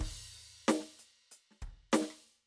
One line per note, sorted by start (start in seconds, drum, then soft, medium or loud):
0.01 kick medium
0.01 crash medium
0.08 kick soft
0.11 kick soft
0.33 open hi-hat soft
0.68 snare loud
0.80 snare soft
0.99 closed hi-hat soft
1.32 closed hi-hat soft
1.51 snare soft
1.55 snare soft
1.62 kick soft
1.62 closed hi-hat soft
1.92 closed hi-hat medium
1.92 snare loud
1.92 hi-hat pedal soft
2.02 cross-stick soft
2.02 snare soft
2.11 cross-stick soft